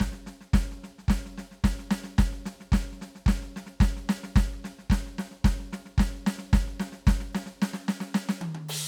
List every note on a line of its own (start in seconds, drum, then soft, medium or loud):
0.00 kick medium
0.00 snare loud
0.12 snare soft
0.26 snare medium
0.41 snare soft
0.53 kick loud
0.53 snare loud
0.71 snare soft
0.84 snare medium
0.98 snare soft
1.08 kick loud
1.08 snare loud
1.26 snare soft
1.38 snare medium
1.51 snare soft
1.64 kick loud
1.64 snare loud
1.79 snare soft
1.91 snare loud
2.04 snare medium
2.18 kick loud
2.18 snare loud
2.32 snare soft
2.46 snare medium
2.60 snare soft
2.72 kick loud
2.72 snare loud
2.92 snare soft
3.01 snare medium
3.15 snare soft
3.26 kick loud
3.26 snare loud
3.42 snare soft
3.56 snare medium
3.66 snare soft
3.80 kick loud
3.80 snare loud
3.96 snare soft
4.09 snare loud
4.23 snare medium
4.36 kick loud
4.36 snare loud
4.53 cross-stick soft
4.64 snare medium
4.79 snare soft
4.90 kick loud
4.90 snare loud
5.06 snare soft
5.18 snare medium
5.31 snare soft
5.44 kick loud
5.44 snare loud
5.60 snare soft
5.73 snare medium
5.86 snare soft
5.98 kick loud
5.98 snare loud
6.13 snare soft
6.27 snare loud
6.38 snare medium
6.53 kick loud
6.53 snare loud
6.67 snare soft
6.80 snare loud
6.92 snare soft
7.06 kick loud
7.06 snare loud
7.06 closed hi-hat soft
7.20 snare soft
7.33 snare loud
7.33 closed hi-hat soft
7.46 snare medium
7.62 snare loud
7.74 snare medium
7.88 snare loud
8.00 snare medium
8.14 snare loud
8.29 snare loud
8.41 high tom loud
8.55 high tom loud
8.69 crash loud